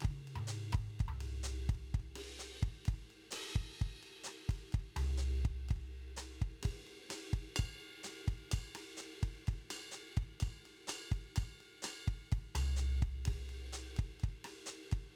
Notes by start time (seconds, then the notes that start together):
0.01 kick, high tom, ride
0.10 kick
0.28 ride
0.36 mid tom
0.48 hi-hat pedal, ride
0.73 kick, mid tom, ride
0.80 kick
1.00 kick, ride
1.06 kick, floor tom
1.21 ride
1.44 hi-hat pedal, ride
1.69 kick, ride
1.75 kick
1.94 kick, ride
2.00 kick
2.16 ride, crash
2.39 hi-hat pedal, ride
2.63 kick, ride
2.68 kick
2.86 kick, ride
2.94 kick
3.11 ride
3.31 hi-hat pedal, crash, ride
3.56 kick, ride
3.61 kick
3.80 kick, snare, ride
3.87 kick
4.03 ride
4.24 cross-stick, hi-hat pedal, ride
4.49 kick, ride
4.73 kick, ride
4.79 kick
4.97 floor tom, ride
5.18 hi-hat pedal, ride
5.45 kick, ride
5.50 kick
5.69 kick, ride
5.76 kick
5.94 ride
6.17 cross-stick, snare, hi-hat pedal, ride
6.42 kick
6.63 kick, ride
6.70 kick
6.87 ride
7.10 snare, hi-hat pedal, ride
7.33 kick, ride
7.56 kick, ride bell
7.65 kick
7.81 ride
8.04 snare, hi-hat pedal, ride
8.28 kick, ride
8.33 kick
8.52 kick, ride bell
8.59 kick
8.75 cross-stick, ride
8.97 hi-hat pedal, ride
9.23 kick, ride
9.48 kick, ride
9.53 kick
9.70 snare, ride bell
9.92 hi-hat pedal, ride
10.17 kick, ride
10.23 kick
10.41 kick, snare, ride bell
10.48 kick
10.66 ride
10.76 snare
10.88 cross-stick, hi-hat pedal, ride bell
11.12 kick, ride
11.36 kick, cross-stick, ride bell
11.43 kick
11.61 ride
11.82 cross-stick, snare, hi-hat pedal, ride bell
12.08 kick, ride
12.32 kick, ride
12.38 kick
12.55 floor tom, ride bell
12.77 hi-hat pedal, ride
13.03 kick, ride
13.08 kick
13.26 kick, ride
13.33 kick
13.50 ride
13.73 hi-hat pedal, ride
13.97 kick, ride
14.20 kick, ride
14.29 kick
14.45 cross-stick, snare, ride
14.66 hi-hat pedal, ride
14.92 kick, ride